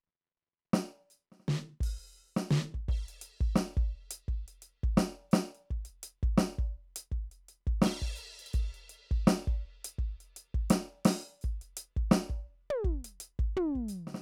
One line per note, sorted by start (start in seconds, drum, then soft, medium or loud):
0.73 snare loud
1.10 hi-hat pedal medium
1.32 snare soft
1.39 snare soft
1.48 snare medium
1.80 open hi-hat medium
1.80 kick soft
2.36 snare medium
2.50 snare loud
2.50 hi-hat pedal medium
2.74 kick soft
2.88 kick soft
2.88 crash soft
3.08 closed hi-hat medium
3.21 closed hi-hat medium
3.40 kick medium
3.55 snare loud
3.76 kick medium
4.10 closed hi-hat loud
4.28 kick soft
4.47 closed hi-hat medium
4.62 closed hi-hat medium
4.83 kick medium
4.97 snare loud
5.31 snare loud
5.31 hi-hat pedal medium
5.54 closed hi-hat soft
5.70 kick soft
5.85 closed hi-hat medium
6.03 closed hi-hat loud
6.22 kick medium
6.37 snare loud
6.58 kick soft
6.96 closed hi-hat loud
7.11 kick soft
7.31 closed hi-hat soft
7.48 closed hi-hat medium
7.67 kick medium
7.82 snare loud
7.82 crash medium
7.86 snare medium
8.01 kick soft
8.15 hi-hat pedal medium
8.39 closed hi-hat medium
8.46 closed hi-hat medium
8.53 kick medium
8.53 closed hi-hat medium
8.74 closed hi-hat soft
8.89 closed hi-hat medium
9.11 kick medium
9.27 snare loud
9.47 kick medium
9.84 closed hi-hat loud
9.98 kick soft
10.20 closed hi-hat soft
10.36 closed hi-hat medium
10.54 kick soft
10.70 open hi-hat loud
10.70 snare loud
11.04 open hi-hat loud
11.04 snare loud
11.41 kick soft
11.41 hi-hat pedal medium
11.61 closed hi-hat soft
11.76 closed hi-hat loud
11.96 kick soft
12.11 snare loud
12.29 kick soft
12.69 high tom loud
12.84 kick soft
13.04 closed hi-hat medium
13.20 closed hi-hat loud
13.39 kick medium
13.56 floor tom loud
13.75 kick soft
13.88 hi-hat pedal loud
14.07 snare soft
14.14 snare soft